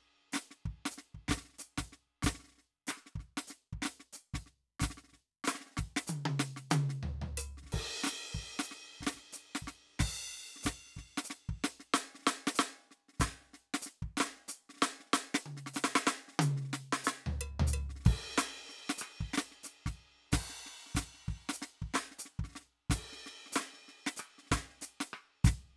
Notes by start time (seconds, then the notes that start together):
0.02 snare
0.33 snare, hi-hat pedal
0.36 snare
0.51 snare
0.66 kick, snare
0.86 snare
0.91 hi-hat pedal
0.98 snare
1.15 kick
1.28 kick, snare
1.31 snare
1.37 snare
1.41 snare
1.45 snare
1.49 snare
1.54 snare
1.59 snare, hi-hat pedal
1.78 kick, snare
1.93 snare
2.23 kick, snare, hi-hat pedal
2.27 snare
2.35 snare
2.40 snare
2.44 snare
2.48 snare
2.51 snare
2.55 snare
2.58 snare
2.87 cross-stick, snare, hi-hat pedal
2.97 snare
3.06 snare
3.16 kick
3.20 snare
3.37 snare
3.48 snare, hi-hat pedal
3.73 kick
3.82 snare
3.85 snare
4.00 snare
4.13 snare, hi-hat pedal
4.34 kick, snare
4.46 snare
4.80 kick, snare, hi-hat pedal
4.83 snare
4.90 snare
4.98 snare
5.04 snare
5.09 snare
5.13 kick, snare
5.44 snare, hi-hat pedal
5.48 snare
5.55 snare
5.61 snare
5.66 snare
5.71 snare
5.77 kick, snare
5.97 snare
6.07 hi-hat pedal, high tom
6.26 high tom
6.40 snare
6.57 snare
6.71 hi-hat pedal, high tom
6.90 snare
7.03 floor tom
7.22 floor tom
7.38 hi-hat pedal, percussion
7.58 snare
7.62 kick, snare
7.66 snare
7.69 snare, ride
7.74 kick
8.04 snare, hi-hat pedal
8.07 snare
8.13 snare
8.21 snare
8.23 snare
8.35 kick, snare
8.59 snare, hi-hat pedal
8.72 snare
9.01 kick, snare
9.07 snare
9.11 kick, snare
9.17 snare
9.23 snare
9.33 snare, hi-hat pedal
9.55 snare
9.62 kick
9.68 snare
10.00 kick, snare, hi-hat pedal, crash
10.56 snare
10.60 snare
10.62 snare, hi-hat pedal
10.65 kick, snare
10.66 snare
10.87 snare
10.97 kick, snare
11.18 snare
11.24 hi-hat pedal
11.30 snare
11.49 kick
11.64 snare
11.80 snare
11.94 snare, hi-hat pedal
12.15 snare
12.19 snare
12.22 snare
12.25 snare
12.27 snare
12.47 snare
12.55 hi-hat pedal
12.59 snare
12.91 snare
13.09 snare
13.14 snare
13.17 snare
13.20 kick, snare, hi-hat pedal
13.26 snare
13.41 snare
13.44 snare
13.48 snare
13.51 snare
13.54 snare
13.74 snare
13.82 hi-hat pedal
13.86 snare
14.02 kick
14.17 snare
14.20 snare
14.26 snare
14.37 snare
14.48 snare, hi-hat pedal
14.58 snare
14.69 snare
14.74 snare
14.77 snare
14.82 snare
15.00 snare
15.07 snare
15.09 snare
15.11 snare
15.14 snare, hi-hat pedal
15.35 snare
15.46 high tom
15.57 snare
15.67 snare
15.74 snare, hi-hat pedal
15.84 snare
15.96 snare
16.07 snare
16.28 snare
16.31 snare
16.33 snare
16.37 snare, hi-hat pedal, high tom
16.57 snare
16.61 snare
16.65 snare
16.69 snare
16.72 snare
16.93 snare
17.04 snare, hi-hat pedal
17.26 floor tom
17.41 percussion
17.60 floor tom
17.67 hi-hat pedal
17.74 percussion
17.86 kick, snare
17.96 snare
18.00 snare
18.03 kick, snare, ride
18.07 snare
18.38 snare, hi-hat pedal
18.57 snare
18.62 snare
18.65 snare
18.69 snare
18.90 snare
18.98 cross-stick, hi-hat pedal
19.21 kick
19.34 snare
19.38 snare
19.52 snare
19.64 snare, hi-hat pedal
19.86 kick, snare
20.32 kick, snare, hi-hat pedal, crash
20.50 snare
20.66 snare
20.86 snare
20.90 snare
20.95 kick, snare, hi-hat pedal
21.01 snare
21.14 snare
21.18 snare
21.28 kick, snare
21.35 snare
21.49 snare, hi-hat pedal
21.62 snare
21.82 kick
21.94 snare
21.96 snare
22.12 snare
22.19 hi-hat pedal
22.26 snare
22.39 kick
22.44 snare
22.49 snare
22.52 snare
22.56 snare
22.61 snare
22.90 kick, snare, hi-hat pedal, ride
23.13 snare
23.26 snare
23.46 snare
23.51 snare, hi-hat pedal
23.54 snare
23.56 snare
23.74 snare
23.88 snare
24.07 snare
24.17 cross-stick, hi-hat pedal
24.38 snare
24.43 snare
24.47 snare
24.52 kick, snare
24.57 snare
24.70 snare
24.74 snare
24.78 snare, hi-hat pedal
24.82 snare
25.01 snare
25.13 cross-stick
25.44 kick, snare, hi-hat pedal